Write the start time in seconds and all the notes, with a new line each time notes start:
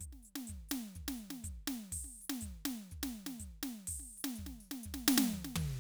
0.01 closed hi-hat, kick
0.13 snare
0.23 closed hi-hat, hi-hat pedal
0.36 snare
0.47 closed hi-hat, kick
0.69 snare, hi-hat pedal
0.96 kick, closed hi-hat
1.01 kick
1.08 snare
1.15 hi-hat pedal
1.20 closed hi-hat
1.31 snare
1.44 closed hi-hat, kick
1.49 kick
1.68 snare
1.92 open hi-hat, kick
1.97 kick
2.05 snare
2.19 hi-hat pedal, open hi-hat
2.30 snare
2.41 closed hi-hat, kick
2.66 snare
2.92 kick, closed hi-hat
3.03 snare
3.17 closed hi-hat
3.27 snare
3.40 closed hi-hat, kick
3.63 snare
3.88 open hi-hat, kick
4.00 snare
4.13 open hi-hat
4.18 hi-hat pedal
4.24 snare
4.36 kick, closed hi-hat
4.44 kick, snare
4.61 hi-hat pedal, open hi-hat
4.71 snare
4.84 kick, closed hi-hat
4.94 snare
5.08 snare, hi-hat pedal
5.18 snare
5.33 kick, snare
5.45 snare
5.56 kick, hi-hat pedal, mid tom
5.62 kick